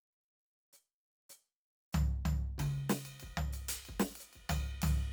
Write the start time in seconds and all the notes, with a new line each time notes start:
0.73 hi-hat pedal
1.29 hi-hat pedal
1.93 floor tom, hi-hat pedal
2.25 floor tom
2.58 kick, mid tom, ride bell
2.79 kick
2.89 snare, hi-hat pedal, ride bell
3.05 kick, ride bell
3.20 kick, ride bell
3.37 floor tom
3.53 hi-hat pedal, ride
3.68 kick, closed hi-hat
3.85 kick, ride bell
4.00 snare
4.10 snare
4.15 ride
4.19 hi-hat pedal
4.33 kick, ride bell
4.49 kick, ride bell, floor tom
4.82 floor tom, hi-hat pedal, ride
4.98 kick